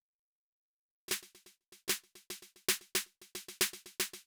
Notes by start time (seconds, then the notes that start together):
1.08 snare
1.11 snare
1.23 snare
1.35 snare
1.46 snare
1.61 snare
1.72 snare
1.88 snare
2.03 snare
2.15 snare
2.30 snare
2.42 snare
2.56 snare
2.69 snare
2.81 snare
2.95 snare
3.06 snare
3.22 snare
3.35 snare
3.48 snare
3.61 snare
3.73 snare
3.86 snare
4.00 snare
4.13 snare